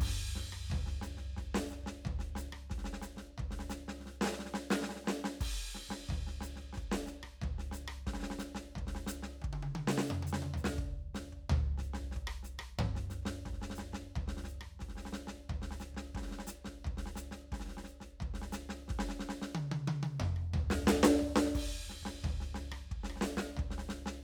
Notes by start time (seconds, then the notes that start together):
0.01 kick, crash
0.07 snare
0.36 snare
0.47 kick
0.53 cross-stick
0.70 kick, floor tom
0.87 snare
1.02 snare, hi-hat pedal
1.18 kick, snare
1.37 kick, snare
1.55 snare
1.69 snare, hi-hat pedal
1.84 kick, snare
2.05 kick, floor tom
2.19 snare
2.36 snare, hi-hat pedal
2.53 cross-stick
2.70 kick, snare
2.78 snare
2.85 snare
2.93 snare
3.02 snare, hi-hat pedal
3.17 kick, snare
3.38 kick, floor tom
3.51 snare
3.60 snare
3.70 snare, hi-hat pedal
3.88 snare
4.00 snare
4.06 snare
4.21 snare
4.25 snare
4.27 snare
4.33 snare
4.39 snare
4.46 snare
4.54 snare
4.71 snare
4.76 cross-stick
4.81 snare
4.83 snare
4.88 snare
4.96 snare
5.05 snare
5.08 snare
5.25 snare
5.41 kick, crash
5.75 snare
5.89 kick, snare
6.09 kick, floor tom
6.27 snare
6.41 snare, hi-hat pedal
6.56 kick, snare
6.73 snare
6.78 kick
6.92 snare
7.07 snare, hi-hat pedal
7.23 kick, cross-stick
7.42 kick, floor tom
7.59 snare
7.72 snare, hi-hat pedal
7.85 kick, cross-stick
8.07 kick, snare
8.14 snare
8.20 snare
8.23 snare
8.31 snare
8.39 snare, hi-hat pedal
8.55 kick, snare
8.76 kick, floor tom
8.87 snare
8.95 snare
9.07 snare, hi-hat pedal
9.23 snare
9.42 kick, high tom
9.53 high tom
9.63 high tom
9.76 high tom
9.88 snare
9.98 snare
10.07 hi-hat pedal, mid tom
10.23 high tom
10.27 hi-hat pedal
10.33 snare
10.43 high tom
10.54 floor tom, hi-hat pedal
10.65 snare
10.73 cross-stick
10.79 kick
11.15 snare, hi-hat pedal
11.33 kick
11.50 kick, floor tom
11.78 snare
11.83 hi-hat pedal
11.94 snare
11.98 kick
12.12 snare
12.16 kick
12.28 cross-stick
12.43 snare, hi-hat pedal
12.59 kick, cross-stick
12.79 kick, floor tom
12.96 snare
13.10 snare, hi-hat pedal
13.23 kick, snare
13.46 kick, snare
13.54 snare
13.60 snare
13.62 snare
13.70 snare
13.76 snare, hi-hat pedal
13.93 kick, snare
14.16 kick, floor tom
14.28 snare
14.37 snare
14.44 snare
14.48 hi-hat pedal
14.61 kick, cross-stick
14.80 kick, snare
14.89 snare
14.96 snare
15.06 snare
15.13 snare, hi-hat pedal
15.28 kick, snare
15.50 kick, floor tom
15.62 snare
15.71 snare
15.80 snare, hi-hat pedal
15.95 kick, snare
16.15 kick, snare
16.22 snare
16.28 snare
16.32 snare
16.39 snare
16.47 snare, hi-hat pedal
16.65 kick, snare
16.85 kick, floor tom
16.98 snare
17.06 snare
17.16 snare, hi-hat pedal
17.32 kick, snare
17.52 kick, snare
17.60 snare
17.65 snare
17.69 snare
17.77 snare
17.84 snare, hi-hat pedal
18.01 kick, snare
18.21 kick, floor tom
18.34 snare
18.42 snare
18.53 snare, hi-hat pedal
18.70 snare
18.88 kick, snare
18.99 kick, snare
19.20 snare
19.29 snare
19.42 snare
19.55 high tom
19.72 high tom
19.88 high tom
20.03 open hi-hat, high tom
20.20 kick, mid tom
20.37 cross-stick
20.54 kick, floor tom
20.71 snare
20.86 kick, snare
21.04 snare
21.20 floor tom
21.36 snare
21.46 snare
21.55 kick, crash
21.89 snare, hi-hat pedal
22.03 kick, snare
22.24 kick, floor tom
22.41 snare
22.55 snare
22.72 kick, cross-stick
22.90 kick, snare
22.99 snare
23.04 snare
23.10 cross-stick
23.16 snare
23.21 snare
23.26 hi-hat pedal
23.37 kick, snare
23.57 kick, floor tom
23.71 snare
23.79 snare
23.89 snare, hi-hat pedal
24.06 snare